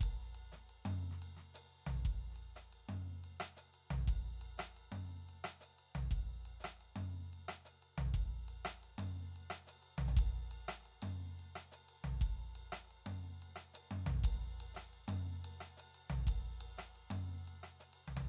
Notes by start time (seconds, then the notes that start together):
0.01 kick, ride
0.21 snare
0.35 ride
0.52 snare, hi-hat pedal
0.69 ride
0.85 mid tom, ride
1.11 snare
1.22 ride
1.37 snare
1.54 hi-hat pedal, ride
1.87 floor tom, ride
2.05 kick, ride
2.32 snare
2.36 ride
2.56 cross-stick, snare, hi-hat pedal
2.73 ride
2.89 mid tom, ride
3.24 ride
3.40 cross-stick
3.57 hi-hat pedal, ride
3.74 ride
3.91 floor tom
4.08 kick, ride
4.41 ride
4.58 cross-stick, hi-hat pedal
4.77 ride
4.92 mid tom, ride
5.29 ride
5.44 cross-stick
5.61 hi-hat pedal, ride
5.79 ride
5.95 floor tom
6.11 kick, ride
6.46 ride
6.60 hi-hat pedal
6.64 cross-stick
6.81 ride
6.96 mid tom, ride
7.33 ride
7.49 cross-stick
7.65 hi-hat pedal, ride
7.83 ride
7.98 floor tom
8.14 kick, ride
8.48 ride
8.65 cross-stick, hi-hat pedal
8.83 ride
8.98 mid tom, ride
9.36 ride
9.50 cross-stick
9.67 hi-hat pedal, ride
9.83 ride
9.98 floor tom
10.08 floor tom
10.17 kick, ride
10.51 ride
10.68 cross-stick, hi-hat pedal
10.86 ride
11.02 mid tom, ride
11.39 ride
11.56 cross-stick
11.72 hi-hat pedal, ride
11.89 ride
12.04 floor tom
12.21 kick, ride
12.56 ride
12.72 cross-stick, hi-hat pedal
12.91 ride
13.06 mid tom, ride
13.42 ride
13.56 cross-stick
13.74 hi-hat pedal, ride
13.91 mid tom
14.07 floor tom
14.24 kick, ride
14.60 ride
14.74 cross-stick, hi-hat pedal
14.93 ride
15.08 mid tom, ride
15.45 ride
15.61 cross-stick
15.77 hi-hat pedal, ride
15.95 ride
16.10 floor tom
16.27 kick, ride
16.61 ride
16.78 cross-stick, hi-hat pedal
16.96 ride
17.10 mid tom, ride
17.48 ride
17.63 cross-stick
17.80 hi-hat pedal, ride
17.93 ride
18.08 floor tom
18.17 floor tom